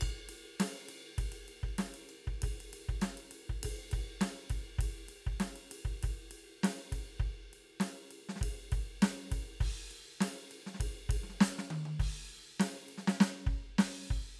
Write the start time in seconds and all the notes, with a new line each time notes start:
0.01 kick, ride bell
0.29 ride
0.60 snare, ride
0.89 ride
1.18 kick, ride
1.32 ride
1.48 ride
1.63 kick
1.78 snare, ride
1.94 ride
2.09 ride bell
2.27 kick
2.42 kick, ride
2.60 ride
2.73 ride
2.89 kick
3.02 snare, ride bell
3.17 ride
3.31 ride
3.49 kick
3.63 kick, ride
3.92 kick, ride
4.21 snare, ride
4.50 kick, ride
4.79 kick, ride
5.09 ride
5.27 kick
5.40 snare, ride
5.56 ride
5.71 ride
5.85 kick
6.03 kick, ride
6.31 ride
6.63 snare, ride
6.92 kick, ride
7.20 kick
7.53 ride
7.80 snare, ride
8.11 ride
8.29 snare
8.36 snare
8.41 kick, ride
8.72 kick, ride
9.02 snare, ride
9.32 kick, ride
9.61 kick, crash
9.91 ride
10.21 snare, ride
10.51 ride
10.67 snare
10.74 snare
10.80 kick, ride
11.09 kick, ride
11.23 snare
11.29 snare
11.36 snare
11.41 snare, hi-hat pedal
11.59 snare
11.70 high tom
11.86 high tom
12.00 kick, crash
12.31 ride
12.60 snare, ride
12.89 ride
12.98 snare
13.08 snare
13.20 snare
13.47 kick
13.79 snare, crash
14.10 kick